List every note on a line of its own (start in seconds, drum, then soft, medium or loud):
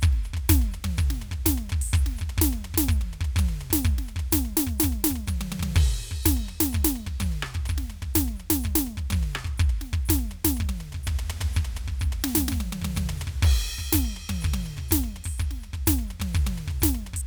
0.01 kick loud
0.01 floor tom medium
0.01 hi-hat pedal medium
0.12 snare soft
0.23 floor tom medium
0.23 hi-hat pedal soft
0.33 kick medium
0.33 floor tom medium
0.48 kick loud
0.48 snare loud
0.48 hi-hat pedal medium
0.61 floor tom medium
0.71 floor tom medium
0.71 hi-hat pedal soft
0.84 kick medium
0.84 high tom loud
0.97 kick loud
0.97 floor tom medium
0.97 hi-hat pedal medium
1.10 snare medium
1.19 floor tom medium
1.19 hi-hat pedal soft
1.31 kick medium
1.31 floor tom medium
1.46 kick medium
1.46 snare loud
1.46 hi-hat pedal medium
1.57 floor tom medium
1.69 kick medium
1.69 floor tom medium
1.69 hi-hat pedal soft
1.81 open hi-hat loud
1.93 kick loud
1.93 floor tom loud
1.93 hi-hat pedal medium
2.06 snare medium
2.16 floor tom medium
2.16 hi-hat pedal medium
2.21 kick medium
2.29 floor tom medium
2.38 kick loud
2.38 snare loud
2.38 hi-hat pedal medium
2.52 floor tom medium
2.63 floor tom medium
2.63 hi-hat pedal soft
2.74 kick medium
2.74 snare loud
2.88 kick loud
2.88 floor tom medium
2.88 hi-hat pedal medium
3.01 high tom medium
3.10 floor tom medium
3.10 hi-hat pedal soft
3.21 kick medium
3.21 floor tom medium
3.36 kick loud
3.36 hi-hat pedal medium
3.36 high tom loud
3.48 floor tom medium
3.59 floor tom medium
3.59 hi-hat pedal soft
3.70 kick medium
3.70 snare loud
3.83 kick loud
3.83 hi-hat pedal medium
3.98 snare medium
4.05 floor tom medium
4.05 hi-hat pedal soft
4.16 kick medium
4.16 floor tom medium
4.31 kick medium
4.31 snare loud
4.31 hi-hat pedal medium
4.45 floor tom medium
4.52 hi-hat pedal soft
4.57 snare loud
4.67 kick medium
4.67 floor tom soft
4.78 snare loud
4.78 hi-hat pedal medium
4.84 kick medium
4.92 floor tom medium
5.00 snare loud
5.00 hi-hat pedal soft
5.11 kick medium
5.15 floor tom medium
5.27 kick medium
5.27 hi-hat pedal medium
5.27 high tom loud
5.41 high tom loud
5.47 hi-hat pedal soft
5.52 high tom loud
5.59 kick medium
5.59 high tom loud
5.75 kick loud
5.75 hi-hat pedal medium
5.75 crash medium
5.96 hi-hat pedal soft
6.11 kick medium
6.23 kick loud
6.23 snare loud
6.23 hi-hat pedal medium
6.37 floor tom medium
6.48 floor tom medium
6.60 kick medium
6.60 snare loud
6.71 kick medium
6.71 floor tom medium
6.71 hi-hat pedal medium
6.84 snare loud
6.95 floor tom medium
7.06 kick medium
7.06 floor tom medium
7.20 kick medium
7.20 hi-hat pedal medium
7.20 high tom loud
7.32 floor tom soft
7.41 cross-stick loud
7.41 hi-hat pedal soft
7.54 kick medium
7.54 floor tom medium
7.65 kick medium
7.65 floor tom medium
7.65 hi-hat pedal medium
7.78 snare medium
7.89 floor tom medium
7.89 hi-hat pedal soft
8.02 kick medium
8.02 floor tom medium
8.14 kick medium
8.14 snare loud
8.14 hi-hat pedal medium
8.28 floor tom soft
8.36 floor tom medium
8.36 hi-hat pedal soft
8.50 kick medium
8.50 snare loud
8.61 floor tom medium
8.61 hi-hat pedal medium
8.65 kick medium
8.75 snare loud
8.82 hi-hat pedal soft
8.87 floor tom soft
8.97 kick medium
8.97 floor tom medium
9.10 kick medium
9.10 hi-hat pedal medium
9.10 high tom loud
9.23 floor tom medium
9.31 cross-stick loud
9.31 hi-hat pedal soft
9.44 kick medium
9.44 floor tom medium
9.57 kick loud
9.57 hi-hat pedal medium
9.69 floor tom medium
9.79 snare medium
9.79 hi-hat pedal soft
9.93 kick medium
9.93 floor tom medium
10.05 kick medium
10.05 hi-hat pedal medium
10.10 snare loud
10.18 floor tom soft
10.28 floor tom medium
10.28 hi-hat pedal soft
10.44 kick medium
10.44 snare loud
10.54 floor tom medium
10.54 hi-hat pedal medium
10.60 kick medium
10.69 high tom loud
10.77 floor tom medium
10.77 hi-hat pedal soft
10.92 kick medium
10.92 floor tom medium
11.03 kick medium
11.03 floor tom loud
11.03 hi-hat pedal medium
11.19 floor tom loud
11.25 hi-hat pedal soft
11.30 floor tom loud
11.40 kick medium
11.40 floor tom loud
11.53 kick loud
11.53 hi-hat pedal medium
11.64 floor tom medium
11.75 floor tom medium
11.75 hi-hat pedal soft
11.88 kick medium
11.99 kick medium
11.99 snare soft
11.99 hi-hat pedal medium
12.12 floor tom medium
12.21 snare loud
12.21 hi-hat pedal soft
12.35 kick medium
12.35 snare loud
12.47 snare loud
12.47 hi-hat pedal medium
12.52 kick medium
12.60 high tom loud
12.69 hi-hat pedal soft
12.69 high tom loud
12.81 kick medium
12.81 high tom loud
12.95 kick medium
12.95 hi-hat pedal medium
12.95 high tom loud
13.09 floor tom loud
13.17 floor tom loud
13.17 hi-hat pedal medium
13.27 kick medium
13.42 kick loud
13.42 hi-hat pedal medium
13.42 crash loud
13.64 hi-hat pedal soft
13.78 kick medium
13.78 floor tom soft
13.92 kick medium
13.92 snare loud
13.92 hi-hat pedal medium
14.04 floor tom medium
14.14 floor tom medium
14.14 hi-hat pedal soft
14.29 kick medium
14.29 high tom loud
14.41 kick medium
14.41 floor tom medium
14.41 hi-hat pedal medium
14.54 high tom loud
14.62 floor tom medium
14.62 hi-hat pedal soft
14.77 kick medium
14.77 floor tom medium
14.88 kick medium
14.88 snare loud
14.88 hi-hat pedal medium
15.03 floor tom medium
15.11 hi-hat pedal soft
15.16 floor tom medium
15.24 open hi-hat loud
15.24 kick medium
15.38 kick medium
15.38 floor tom medium
15.38 hi-hat pedal medium
15.51 snare soft
15.60 floor tom soft
15.60 hi-hat pedal soft
15.73 kick medium
15.73 floor tom medium
15.86 kick medium
15.86 snare loud
15.86 hi-hat pedal medium
15.99 floor tom soft
16.07 floor tom medium
16.07 hi-hat pedal soft
16.20 kick medium
16.20 high tom loud
16.33 kick loud
16.33 floor tom medium
16.33 hi-hat pedal medium
16.46 high tom loud
16.55 floor tom medium
16.55 hi-hat pedal soft
16.68 kick medium
16.68 floor tom medium
16.80 kick medium
16.80 snare loud
16.80 hi-hat pedal medium
16.94 floor tom medium
17.02 hi-hat pedal soft
17.06 floor tom medium
17.13 open hi-hat loud
17.13 kick medium